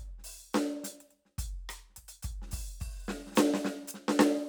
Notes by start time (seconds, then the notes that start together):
0.18 snare
0.24 open hi-hat
0.53 snare, hi-hat pedal
0.84 closed hi-hat, snare
1.00 closed hi-hat
1.11 closed hi-hat
1.25 snare
1.38 closed hi-hat, kick
1.69 closed hi-hat, cross-stick
1.90 snare
1.96 kick, closed hi-hat
2.08 closed hi-hat
2.23 closed hi-hat, kick
2.42 snare
2.47 snare
2.51 open hi-hat, kick, snare
2.54 snare
2.80 open hi-hat, kick
3.08 snare
3.27 snare
3.32 snare
3.35 snare, hi-hat pedal
3.37 snare
3.54 snare
3.65 snare
3.83 snare
3.88 hi-hat pedal
3.94 snare
4.08 snare
4.19 snare
4.37 snare